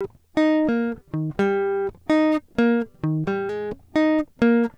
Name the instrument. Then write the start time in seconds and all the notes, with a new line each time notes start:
acoustic guitar
0.38 D#4
0.70 A#3
1.15 D#3
1.40 G3
2.11 D#4
2.60 A#3
3.05 D#3
3.29 G3
3.51 G#3
3.97 D#4
4.43 A#3